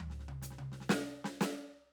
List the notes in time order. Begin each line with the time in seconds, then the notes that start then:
0.00 floor tom
0.10 snare
0.19 snare
0.28 high tom
0.42 snare, hi-hat pedal
0.51 snare
0.58 high tom
0.72 snare
0.80 snare
0.88 snare, hi-hat pedal
1.24 snare
1.41 snare, hi-hat pedal